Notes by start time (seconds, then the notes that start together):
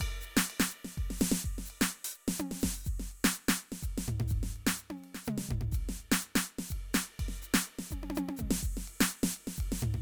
0.01 kick, ride bell
0.07 kick
0.10 kick
0.21 hi-hat pedal
0.28 ride
0.37 snare
0.50 ride bell
0.60 snare
0.69 hi-hat pedal
0.74 ride
0.85 snare
0.98 kick, ride bell
1.04 kick
1.07 kick, snare
1.18 snare, hi-hat pedal
1.32 snare
1.45 kick, crash
1.51 kick
1.59 snare
1.65 hi-hat pedal
1.71 ride bell
1.82 snare
1.94 ride bell
2.05 open hi-hat
2.12 hi-hat pedal
2.28 snare
2.38 hi-hat pedal, high tom
2.52 snare
2.60 snare, hi-hat pedal
2.64 kick
2.75 open hi-hat
2.85 kick, hi-hat pedal, crash
2.93 kick
2.96 kick, snare
3.12 ride
3.25 snare
3.33 hi-hat pedal, ride
3.49 snare
3.54 hi-hat pedal
3.61 ride
3.72 snare
3.82 kick, hi-hat pedal, ride
3.89 kick
3.98 snare, hi-hat pedal
4.06 kick, floor tom
4.20 floor tom
4.28 kick, hi-hat pedal
4.33 ride
4.38 kick
4.42 kick, snare
4.49 hi-hat pedal
4.57 ride
4.67 snare
4.77 hi-hat pedal, ride
4.91 high tom
4.96 hi-hat pedal
5.04 ride
5.15 snare
5.25 hi-hat pedal, mid tom
5.38 snare
5.44 hi-hat pedal
5.50 kick, floor tom
5.61 floor tom
5.72 kick, hi-hat pedal, ride
5.79 kick
5.83 kick
5.89 snare
6.01 ride
6.12 snare
6.20 hi-hat pedal
6.25 ride
6.36 snare
6.48 ride
6.59 snare
6.69 kick, hi-hat pedal
6.73 ride
6.77 kick
6.94 snare, hi-hat pedal, ride
7.20 kick, ride bell
7.26 kick, snare
7.42 hi-hat pedal, ride
7.54 snare
7.62 hi-hat pedal, ride
7.79 snare
7.90 kick, hi-hat pedal, high tom
8.04 high tom
8.11 high tom
8.15 hi-hat pedal, high tom
8.29 high tom
8.37 hi-hat pedal, mid tom
8.42 kick
8.47 kick
8.51 snare
8.62 kick, hi-hat pedal, crash
8.73 kick
8.77 snare
8.88 ride
9.01 snare
9.08 hi-hat pedal
9.13 ride
9.24 snare
9.30 kick, hi-hat pedal
9.37 ride
9.48 snare
9.56 kick, hi-hat pedal
9.61 kick, ride
9.68 kick
9.72 snare
9.79 hi-hat pedal
9.83 floor tom
9.95 floor tom